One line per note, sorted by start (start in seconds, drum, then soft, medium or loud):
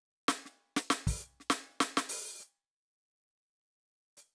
0.28 snare loud
0.45 snare soft
0.76 snare loud
0.90 snare loud
1.07 open hi-hat loud
1.07 kick medium
1.21 hi-hat pedal medium
1.40 snare soft
1.50 snare loud
1.70 snare soft
1.80 snare loud
1.97 snare loud
2.09 open hi-hat loud
2.40 hi-hat pedal medium
4.17 hi-hat pedal medium